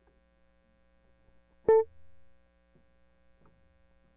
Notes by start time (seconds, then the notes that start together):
1.69 A4